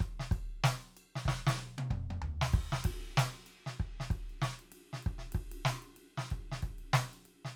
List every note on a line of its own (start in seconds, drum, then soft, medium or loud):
0.01 kick medium
0.01 ride soft
0.20 snare medium
0.32 kick loud
0.32 ride bell soft
0.64 snare loud
0.64 hi-hat pedal soft
0.97 ride bell medium
1.16 snare medium
1.26 kick medium
1.26 snare loud
1.47 snare loud
1.59 high tom medium
1.79 high tom loud
1.91 kick medium
1.91 mid tom loud
2.11 mid tom medium
2.22 floor tom loud
2.42 snare loud
2.53 kick loud
2.53 crash medium
2.73 snare loud
2.85 kick medium
2.85 ride loud
3.18 snare loud
3.18 hi-hat pedal soft
3.47 ride bell soft
3.67 snare medium
3.80 kick medium
4.01 snare medium
4.11 kick medium
4.11 ride soft
4.30 ride bell soft
4.42 snare loud
4.42 hi-hat pedal soft
4.60 ride soft
4.73 ride medium
4.94 snare medium
5.03 kick medium
5.03 ride soft
5.19 snare soft
5.33 kick medium
5.33 ride medium
5.52 ride medium
5.66 snare loud
5.66 hi-hat pedal soft
5.83 ride soft
5.97 ride medium
6.18 snare medium
6.31 kick medium
6.31 ride soft
6.52 snare medium
6.63 kick medium
6.63 ride soft
6.79 ride soft
6.94 snare loud
6.94 hi-hat pedal medium
7.14 ride soft
7.26 ride soft
7.45 snare medium